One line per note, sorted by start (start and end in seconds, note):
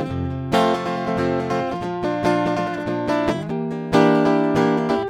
0.00 0.10 D#3
0.00 0.56 C4
0.00 0.56 F4
0.11 0.32 F2
0.11 0.54 C3
0.11 0.23 F3
0.33 0.53 F3
0.54 0.82 F2
0.54 0.97 C3
0.54 0.87 F3
0.54 0.76 A3
0.54 0.76 C4
0.54 0.77 F4
0.76 0.89 A3
0.76 0.88 C4
0.76 0.87 F4
0.88 0.98 F3
0.88 0.98 A3
0.88 1.07 C4
0.88 1.07 F4
0.97 1.19 C3
0.97 1.10 F3
0.97 1.10 A3
1.07 1.20 F3
1.07 1.20 A3
1.07 1.21 C4
1.07 1.22 F4
1.20 1.62 C3
1.20 1.54 F3
1.20 1.42 A3
1.20 1.41 C4
1.20 1.50 F4
1.42 1.53 A3
1.42 1.52 C4
1.52 1.66 F3
1.52 1.66 A3
1.52 1.79 C4
1.52 1.73 F4
1.62 1.79 A#2
1.74 1.84 F3
1.74 2.06 F4
1.83 2.00 A#2
1.83 2.04 F3
2.04 2.25 A#2
2.04 2.25 F3
2.04 2.27 D4
2.04 2.28 F4
2.25 2.70 A#2
2.25 2.47 F3
2.25 2.49 D4
2.25 2.48 F4
2.47 2.60 F3
2.47 2.58 D4
2.47 2.59 F4
2.59 2.68 F3
2.59 2.69 D4
2.59 2.78 F4
2.68 2.87 F3
2.68 2.79 D4
2.79 2.90 D4
2.88 3.27 A#2
2.88 3.09 F3
2.88 3.10 D4
2.88 3.04 F4
3.09 3.29 F3
3.09 3.30 D4
3.09 3.32 E4
3.29 3.47 C#3
3.29 3.51 F#3
3.29 3.41 D#4
3.29 3.49 E4
3.49 3.94 E3
3.49 3.72 A#3
3.49 3.73 G4
3.72 3.95 A#3
3.72 3.95 E4
3.72 3.96 G4
3.95 4.58 E3
3.95 4.29 A#3
3.95 4.29 D4
3.95 4.25 E4
3.95 4.27 G4
4.28 4.57 A#3
4.28 4.58 D4
4.28 4.59 E4
4.28 4.59 G4
4.58 4.96 E3
4.58 4.93 A#3
4.58 4.79 D4
4.58 4.80 E4
4.58 4.80 G4
4.79 4.92 D4
4.79 4.89 E4
4.79 4.91 G4
4.91 5.01 A#3
4.91 4.99 D4
4.91 5.07 E4
4.91 5.10 G4